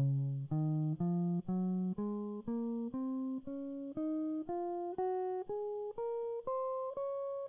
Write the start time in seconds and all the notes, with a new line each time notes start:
0.01 C#3
0.53 D#3
1.02 F3
1.50 F#3
1.99 G#3
2.49 A#3
2.95 C4
3.48 C#4
3.98 D#4
4.50 F4
4.99 F#4
5.50 G#4
5.99 A#4
6.48 C5
6.97 C#5